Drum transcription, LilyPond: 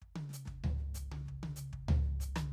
\new DrumStaff \drummode { \time 4/4 \tempo 4 = 95 bd16 tommh16 <sn hhp>16 <sn bd>16 tomfh16 sn16 <sn hhp bd>16 tommh16 <sn bd>16 tommh16 <hhp sn>16 <sn bd>16 tomfh16 sn16 <sn bd hhp>16 <ss tommh>16 | }